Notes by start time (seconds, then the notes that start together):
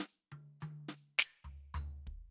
0.05 snare
0.31 high tom
0.60 hi-hat pedal, high tom
0.88 snare
1.18 snare, hi-hat pedal
1.44 floor tom
1.74 floor tom, hi-hat pedal
2.07 kick